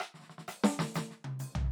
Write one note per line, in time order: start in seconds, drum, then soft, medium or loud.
0.02 cross-stick medium
0.02 hi-hat pedal soft
0.14 snare soft
0.19 snare soft
0.22 snare soft
0.30 snare soft
0.38 snare soft
0.48 cross-stick medium
0.48 hi-hat pedal medium
0.64 snare loud
0.79 snare loud
0.94 snare medium
0.94 hi-hat pedal medium
1.11 snare soft
1.24 high tom loud
1.39 hi-hat pedal medium
1.39 high tom medium
1.55 floor tom loud